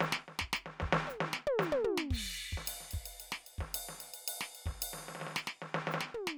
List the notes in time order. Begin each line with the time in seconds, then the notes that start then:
0.01 snare, hi-hat pedal
0.13 snare
0.28 snare
0.39 kick, snare
0.53 snare, hi-hat pedal
0.66 snare
0.80 kick, snare
0.88 kick
0.93 snare
1.07 hi-hat pedal, high tom
1.21 snare
1.33 snare
1.47 high tom
1.59 snare, hi-hat pedal
1.72 high tom
1.84 mid tom
1.98 snare
2.11 kick, hi-hat pedal, crash
2.24 kick
2.53 kick
2.58 snare
2.66 hi-hat pedal, ride bell
2.81 snare
2.86 snare
2.91 kick, ride
3.04 snare, ride
3.20 hi-hat pedal, ride bell
3.32 snare
3.47 ride
3.59 kick, snare
3.74 hi-hat pedal, ride bell
3.89 snare
3.95 snare
4.01 ride
4.14 ride
4.28 hi-hat pedal, ride bell
4.41 snare
4.55 ride
4.66 kick, snare
4.72 kick
4.81 hi-hat pedal, ride bell
4.94 snare
4.99 snare
5.03 snare
5.09 snare
5.15 snare
5.20 snare
5.27 snare
5.32 snare
5.36 snare, hi-hat pedal
5.48 snare
5.62 snare
5.75 snare
5.87 snare, hi-hat pedal
5.94 snare
6.01 snare
6.14 mid tom
6.27 snare